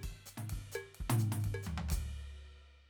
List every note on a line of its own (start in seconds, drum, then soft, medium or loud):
0.01 kick soft
0.01 hi-hat pedal soft
0.01 ride bell medium
0.26 hi-hat pedal medium
0.26 ride soft
0.38 mid tom medium
0.50 kick soft
0.50 ride medium
0.60 kick soft
0.72 hi-hat pedal loud
0.72 percussion loud
0.95 ride medium
1.00 kick soft
1.06 kick soft
1.06 mid tom loud
1.19 hi-hat pedal medium
1.19 ride soft
1.32 mid tom medium
1.39 hi-hat pedal soft
1.44 kick soft
1.44 ride medium
1.54 percussion loud
1.63 floor tom medium
1.63 hi-hat pedal medium
1.78 floor tom medium
1.89 kick medium
1.89 hi-hat pedal loud
1.89 ride medium
1.89 floor tom soft
2.02 kick soft
2.16 hi-hat pedal soft